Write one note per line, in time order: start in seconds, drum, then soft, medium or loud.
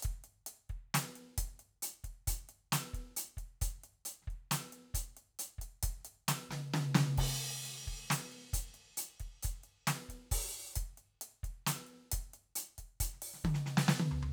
0.01 closed hi-hat medium
0.01 hi-hat pedal soft
0.05 kick soft
0.24 closed hi-hat soft
0.47 closed hi-hat medium
0.70 kick soft
0.70 closed hi-hat soft
0.94 closed hi-hat loud
0.94 snare loud
1.16 closed hi-hat soft
1.38 kick soft
1.38 closed hi-hat loud
1.60 closed hi-hat soft
1.83 closed hi-hat loud
2.04 kick soft
2.04 closed hi-hat soft
2.28 closed hi-hat loud
2.28 kick soft
2.49 closed hi-hat soft
2.72 closed hi-hat loud
2.72 snare loud
2.94 kick soft
2.94 closed hi-hat soft
3.17 closed hi-hat loud
3.37 kick soft
3.37 closed hi-hat soft
3.62 closed hi-hat loud
3.62 kick soft
3.84 closed hi-hat soft
4.05 closed hi-hat loud
4.22 snare soft
4.28 kick soft
4.28 closed hi-hat soft
4.51 closed hi-hat loud
4.51 snare medium
4.73 closed hi-hat soft
4.94 closed hi-hat loud
4.94 kick soft
5.17 closed hi-hat soft
5.39 closed hi-hat loud
5.59 kick soft
5.59 closed hi-hat medium
5.83 kick soft
5.83 closed hi-hat loud
6.00 snare soft
6.05 closed hi-hat medium
6.28 snare loud
6.28 closed hi-hat loud
6.49 kick soft
6.49 snare medium
6.49 high tom medium
6.74 snare medium
6.74 high tom loud
6.95 snare loud
6.95 high tom loud
7.18 kick medium
7.18 crash loud
7.65 closed hi-hat medium
7.87 kick soft
7.87 closed hi-hat soft
8.10 closed hi-hat loud
8.10 snare loud
8.32 closed hi-hat soft
8.54 closed hi-hat loud
8.54 kick soft
8.68 snare soft
8.74 closed hi-hat soft
8.97 closed hi-hat loud
9.20 kick soft
9.20 closed hi-hat soft
9.43 closed hi-hat loud
9.43 kick soft
9.55 snare soft
9.64 closed hi-hat soft
9.87 snare loud
9.87 closed hi-hat loud
10.09 kick soft
10.09 closed hi-hat soft
10.32 open hi-hat loud
10.32 kick soft
10.73 kick soft
10.73 closed hi-hat medium
10.73 hi-hat pedal medium
10.98 closed hi-hat soft
11.21 closed hi-hat medium
11.43 kick soft
11.43 closed hi-hat soft
11.67 closed hi-hat loud
11.67 snare loud
11.87 closed hi-hat soft
12.12 kick soft
12.12 closed hi-hat loud
12.34 closed hi-hat soft
12.56 closed hi-hat loud
12.78 kick soft
12.78 closed hi-hat medium
13.00 closed hi-hat loud
13.00 kick soft
13.13 snare soft
13.22 open hi-hat medium
13.34 snare soft
13.44 kick soft
13.44 high tom loud
13.54 snare medium
13.66 snare medium
13.77 snare loud
13.88 snare loud
14.00 closed hi-hat soft
14.00 high tom loud
14.11 floor tom medium
14.23 floor tom medium